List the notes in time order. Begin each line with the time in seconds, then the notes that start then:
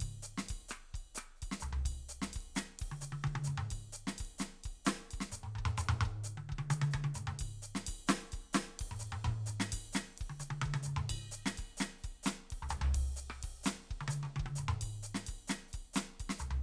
0.01 kick, ride bell
0.23 hi-hat pedal, ride
0.38 snare
0.49 kick, ride bell
0.69 cross-stick, hi-hat pedal
0.95 kick, ride bell
1.15 cross-stick, hi-hat pedal
1.36 hi-hat pedal
1.42 kick, ride bell
1.52 snare
1.60 floor tom, hi-hat pedal
1.73 floor tom
1.86 kick, ride bell
1.92 kick
2.09 hi-hat pedal, ride
2.22 snare
2.34 kick, ride bell
2.41 ride
2.56 snare, hi-hat pedal
2.80 kick, ride
2.90 kick, high tom
3.02 hi-hat pedal, high tom
3.13 high tom
3.22 hi-hat pedal, high tom
3.27 kick
3.36 high tom
3.44 hi-hat pedal, mid tom
3.58 mid tom
3.71 kick, ride bell
3.93 hi-hat pedal
4.07 snare
4.19 kick, ride bell
4.26 ride
4.39 snare, hi-hat pedal
4.64 kick, ride bell
4.85 snare, hi-hat pedal
5.11 kick, ride bell
5.21 snare
5.32 hi-hat pedal, mid tom
5.44 mid tom
5.56 kick, mid tom
5.66 mid tom
5.78 hi-hat pedal, mid tom
5.85 ride
5.89 mid tom
6.01 mid tom
6.06 kick
6.12 kick
6.24 hi-hat pedal, high tom
6.38 high tom
6.50 kick, high tom
6.59 kick, high tom
6.71 hi-hat pedal, high tom
6.82 high tom
6.91 kick, hi-hat pedal, high tom
7.05 high tom
7.15 hi-hat pedal, mid tom
7.28 mid tom
7.40 kick, ride bell
7.48 kick
7.63 hi-hat pedal, ride
7.76 snare
7.87 kick, ride bell
7.94 kick
8.08 snare, hi-hat pedal
8.33 kick, ride bell
8.54 snare, hi-hat pedal
8.80 kick, ride
8.89 kick, mid tom
9.00 hi-hat pedal
9.13 mid tom
9.25 kick, mid tom
9.31 kick
9.47 hi-hat pedal, mid tom
9.60 snare
9.69 hi-hat pedal, ride bell
9.73 kick
9.93 snare, hi-hat pedal
10.18 kick, ride
10.30 high tom
10.40 hi-hat pedal, high tom
10.51 high tom
10.62 kick, high tom
10.74 high tom
10.83 hi-hat pedal, mid tom
10.97 mid tom
11.10 kick, ride bell
11.32 hi-hat pedal, ride
11.46 snare
11.54 hi-hat pedal
11.58 kick, ride bell
11.77 snare, hi-hat pedal
11.99 hi-hat pedal
12.04 kick, ride bell
12.24 snare, hi-hat pedal
12.51 kick, ride
12.63 floor tom
12.70 hi-hat pedal, floor tom
12.82 floor tom
12.95 kick, ride
13.00 kick
13.17 hi-hat pedal, ride
13.30 cross-stick
13.43 kick, ride
13.64 snare, hi-hat pedal
13.91 kick
14.01 high tom
14.08 hi-hat pedal, high tom
14.23 high tom
14.26 high tom
14.36 kick, high tom
14.46 kick, high tom
14.56 hi-hat pedal, mid tom
14.69 mid tom
14.82 kick, ride bell
15.03 hi-hat pedal, ride
15.15 snare
15.24 hi-hat pedal, ride bell
15.29 kick
15.48 snare, hi-hat pedal
15.69 hi-hat pedal
15.74 kick, ride bell
15.94 snare, hi-hat pedal
16.20 kick, ride bell
16.30 snare
16.39 floor tom, hi-hat pedal
16.51 floor tom